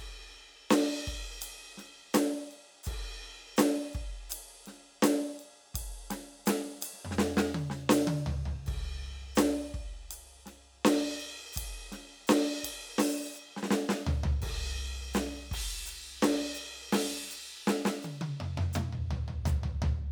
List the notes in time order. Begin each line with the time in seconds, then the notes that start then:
0.36 ride
0.71 snare, hi-hat pedal, ride
1.08 kick, ride
1.42 hi-hat pedal, ride
1.78 snare, ride
2.14 snare, hi-hat pedal, ride
2.52 ride
2.84 kick, hi-hat pedal, ride
3.57 snare, hi-hat pedal, ride
3.94 kick, ride
4.30 hi-hat pedal, ride
4.66 snare, ride
5.03 snare, hi-hat pedal, ride
5.40 ride
5.75 kick, hi-hat pedal, ride
6.11 snare, ride
6.47 snare, hi-hat pedal, ride
6.82 hi-hat pedal, ride
6.94 snare
7.05 mid tom
7.12 snare
7.19 snare
7.37 snare
7.55 high tom
7.71 snare
7.90 snare, hi-hat pedal
8.08 open hi-hat, high tom
8.27 floor tom
8.46 floor tom
8.67 kick, ride
9.36 snare, hi-hat pedal, ride
9.75 kick
10.11 hi-hat pedal, ride
10.46 snare, ride
10.85 snare, hi-hat pedal, ride
11.20 ride
11.53 kick, hi-hat pedal
11.58 ride
11.92 snare, ride
12.28 snare, hi-hat pedal, ride
12.64 kick, ride
12.99 open hi-hat, snare
13.35 hi-hat pedal
13.57 snare
13.63 snare
13.71 snare
13.90 snare
14.07 floor tom
14.24 floor tom
14.42 kick, ride
15.14 snare, hi-hat pedal
15.52 kick, crash
15.86 hi-hat pedal
16.23 snare, ride
16.55 hi-hat pedal
16.93 snare, crash
17.31 hi-hat pedal
17.68 snare
17.86 snare
18.03 hi-hat pedal, high tom
18.22 high tom
18.41 mid tom
18.58 mid tom
18.74 hi-hat pedal, mid tom
18.93 floor tom
19.11 floor tom
19.28 floor tom
19.46 floor tom, hi-hat pedal
19.64 floor tom
19.83 floor tom